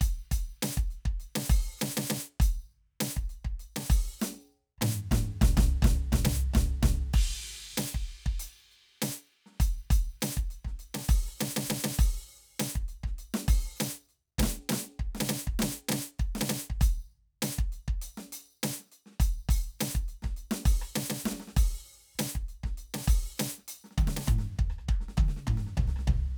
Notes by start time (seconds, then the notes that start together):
0.01 closed hi-hat, kick
0.31 closed hi-hat, kick
0.62 closed hi-hat, snare
0.77 kick
0.91 closed hi-hat
1.05 kick, crash
1.10 ride
1.20 closed hi-hat
1.35 snare
1.50 kick, percussion
1.79 snare, hi-hat pedal
1.97 snare
2.10 snare
2.40 closed hi-hat, kick
3.00 closed hi-hat, snare
3.17 kick
3.29 closed hi-hat
3.45 kick
3.49 ride
3.60 closed hi-hat
3.76 snare
3.90 kick, percussion
4.20 closed hi-hat, snare, hi-hat pedal
4.78 kick, mid tom
4.82 snare
5.11 kick, snare, mid tom
5.41 kick, snare, floor tom
5.57 kick, snare, floor tom
5.82 kick, snare, floor tom
6.12 kick, snare, floor tom
6.25 snare, floor tom
6.54 kick, snare, floor tom
6.83 kick, snare, floor tom
7.13 kick, crash
7.73 kick
7.77 closed hi-hat, snare
7.94 kick
8.06 closed hi-hat
8.26 kick
8.40 closed hi-hat
8.71 closed hi-hat
9.02 closed hi-hat, snare
9.46 snare
9.51 snare
9.55 snare
9.59 closed hi-hat, kick, snare
9.90 closed hi-hat, kick
10.21 closed hi-hat, snare, hi-hat pedal
10.37 kick
10.50 closed hi-hat
10.65 kick, snare
10.75 snare
10.79 closed hi-hat
10.94 snare
11.09 kick, percussion
11.28 cross-stick
11.40 snare, hi-hat pedal
11.56 snare
11.67 kick, snare
11.84 snare
11.99 kick, percussion
12.50 kick
12.60 snare, hi-hat pedal, percussion
12.75 kick
12.88 closed hi-hat
13.04 kick, snare, crash
13.18 closed hi-hat
13.34 snare
13.48 kick, percussion
13.77 closed hi-hat, snare, hi-hat pedal
14.09 closed hi-hat
14.38 kick, snare
14.43 snare
14.69 snare, hi-hat pedal
14.72 snare
14.99 kick
15.15 snare
15.20 snare
15.29 snare, hi-hat pedal
15.47 kick
15.59 snare
15.62 snare
15.89 snare
15.92 snare
16.19 kick, hi-hat pedal
16.35 snare
16.41 snare
16.47 snare, hi-hat pedal
16.70 kick
16.81 closed hi-hat, kick, hi-hat pedal
17.42 snare, hi-hat pedal, percussion
17.59 kick
17.72 closed hi-hat
17.88 kick
18.02 closed hi-hat
18.18 snare
18.32 closed hi-hat
18.63 closed hi-hat, snare
18.80 snare
18.86 snare
18.92 closed hi-hat
19.06 snare
19.10 snare
19.20 closed hi-hat, kick
19.49 kick, percussion
19.80 closed hi-hat, snare, hi-hat pedal
19.95 kick, snare
20.08 closed hi-hat
20.22 kick, snare
20.25 snare
20.28 snare
20.37 closed hi-hat
20.51 snare
20.66 kick, percussion
20.82 cross-stick
20.96 snare, hi-hat pedal
21.10 snare
21.24 kick, snare
21.32 snare
21.40 snare
21.48 snare
21.53 kick
21.57 kick, percussion
22.15 kick, snare, percussion
22.22 hi-hat pedal
22.35 kick
22.48 closed hi-hat
22.64 kick, snare
22.78 closed hi-hat
22.94 snare
23.08 kick, percussion
23.38 closed hi-hat, snare, hi-hat pedal
23.58 snare
23.68 closed hi-hat
23.84 snare
23.91 snare
23.98 kick, hi-hat pedal, high tom
24.07 snare
24.17 snare
24.28 kick, mid tom
24.39 snare
24.59 kick, floor tom
24.70 cross-stick
24.79 cross-stick
24.89 kick, percussion
25.01 snare
25.09 snare
25.17 kick, high tom
25.28 snare
25.37 snare
25.47 kick, mid tom
25.57 snare
25.67 snare
25.72 snare
25.77 kick, floor tom
25.88 snare
25.96 cross-stick, snare
26.07 kick, floor tom